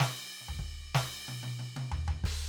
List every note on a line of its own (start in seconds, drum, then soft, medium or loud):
0.00 snare loud
0.00 crash loud
0.41 high tom soft
0.48 floor tom loud
0.59 kick medium
0.95 snare loud
0.95 crash loud
1.28 high tom loud
1.43 high tom loud
1.59 high tom medium
1.76 high tom loud
1.92 floor tom loud
2.08 floor tom loud
2.24 kick medium
2.24 crash loud